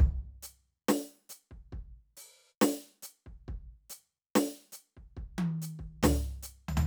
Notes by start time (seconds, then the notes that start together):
0.01 kick
0.43 hi-hat pedal
0.89 snare
1.30 hi-hat pedal
1.52 kick
1.73 kick
2.18 hi-hat pedal
2.62 snare
3.03 hi-hat pedal
3.27 kick
3.49 kick
3.91 hi-hat pedal
4.36 snare
4.73 hi-hat pedal
4.98 kick
5.18 kick
5.39 high tom
5.63 hi-hat pedal
5.80 kick
6.04 snare, floor tom
6.44 hi-hat pedal
6.69 floor tom
6.78 floor tom